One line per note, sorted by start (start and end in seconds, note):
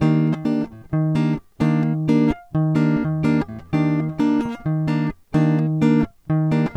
0.01 0.33 D#3
0.01 0.40 A#3
0.01 0.30 D4
0.01 0.32 G4
0.34 0.67 D#3
0.47 0.68 A#3
0.47 0.69 D4
0.47 0.65 G4
0.94 1.43 D#3
1.16 1.41 A#3
1.16 1.42 D4
1.16 1.42 G4
1.61 2.35 D#3
1.61 2.00 A#3
1.61 1.85 D4
1.61 1.88 G4
2.09 2.34 A#3
2.09 2.37 D4
2.09 2.39 G4
2.56 3.01 D#3
2.76 3.12 A#3
2.76 3.08 D4
2.76 3.06 G4
3.06 3.45 D#3
3.24 3.46 A#3
3.24 3.47 D4
3.24 3.44 G4
3.74 4.43 D#3
3.74 4.13 A#3
3.74 4.10 D4
3.74 4.04 G4
4.20 4.57 A#3
4.20 4.46 D4
4.20 4.46 G4
4.67 5.16 D#3
4.89 5.14 A#3
4.89 5.16 D4
4.89 5.15 G4
5.35 6.09 D#3
5.35 5.72 A#3
5.35 5.64 D4
5.35 5.64 G4
5.83 6.08 A#3
5.83 6.10 D4
5.83 6.10 G4
6.31 6.71 D#3
6.53 6.69 A#3
6.53 6.75 D4
6.53 6.72 G4